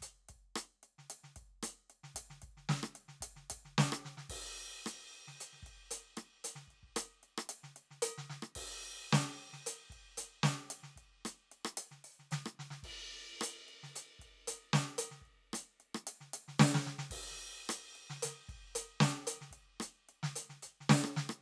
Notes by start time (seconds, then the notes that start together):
0.01 closed hi-hat, kick
0.29 kick, closed hi-hat
0.56 closed hi-hat, cross-stick
0.83 closed hi-hat
0.99 snare
1.10 closed hi-hat
1.24 snare
1.36 kick, closed hi-hat
1.63 closed hi-hat, cross-stick
1.90 closed hi-hat
2.04 snare
2.15 kick, closed hi-hat
2.30 snare
2.42 kick, closed hi-hat
2.57 snare
2.69 snare
2.83 cross-stick
2.96 closed hi-hat
3.09 snare
3.21 kick, closed hi-hat
3.37 snare
3.50 kick, closed hi-hat
3.66 snare
3.78 snare
3.93 cross-stick
4.06 snare
4.18 snare
4.30 kick, crash
4.86 closed hi-hat, cross-stick
5.15 closed hi-hat
5.28 snare
5.41 closed hi-hat
5.53 snare
5.63 kick, closed hi-hat
5.91 closed hi-hat
6.17 cross-stick, closed hi-hat
6.45 closed hi-hat
6.56 snare
6.68 kick, closed hi-hat
6.83 kick
6.97 closed hi-hat, cross-stick
7.23 closed hi-hat
7.38 cross-stick
7.50 closed hi-hat
7.64 snare
7.77 closed hi-hat
7.91 snare
8.03 closed hi-hat
8.18 snare
8.30 snare
8.43 cross-stick
8.56 kick, crash
8.84 closed hi-hat
9.13 closed hi-hat, snare
9.40 closed hi-hat
9.54 snare
9.67 closed hi-hat
9.90 kick, closed hi-hat
10.18 closed hi-hat
10.44 snare, closed hi-hat
10.71 closed hi-hat
10.84 snare
10.97 kick, closed hi-hat
11.26 closed hi-hat, cross-stick
11.52 closed hi-hat
11.65 cross-stick
11.78 closed hi-hat
11.92 snare
12.05 open hi-hat
12.20 snare
12.31 snare, hi-hat pedal
12.46 cross-stick
12.60 snare
12.71 snare
12.83 kick, ride
13.42 closed hi-hat, cross-stick
13.69 closed hi-hat
13.84 snare
13.96 closed hi-hat
14.20 kick, closed hi-hat
14.48 closed hi-hat
14.74 snare
14.99 closed hi-hat
15.11 snare
15.22 kick, closed hi-hat
15.54 closed hi-hat, cross-stick
15.80 closed hi-hat
15.95 cross-stick
16.07 closed hi-hat
16.21 snare
16.34 closed hi-hat
16.48 snare
16.59 snare, hi-hat pedal
16.75 snare
16.87 snare
16.99 snare
17.11 kick, crash
17.31 snare
17.70 closed hi-hat, cross-stick
17.96 closed hi-hat
18.10 snare
18.23 closed hi-hat, snare
18.49 kick, closed hi-hat
18.76 closed hi-hat
19.01 snare
19.27 closed hi-hat
19.42 snare
19.51 kick, closed hi-hat
19.80 closed hi-hat, cross-stick
20.09 closed hi-hat
20.23 snare
20.36 closed hi-hat
20.50 snare
20.63 closed hi-hat, kick
20.81 snare
20.90 snare
21.04 cross-stick
21.17 snare
21.30 cross-stick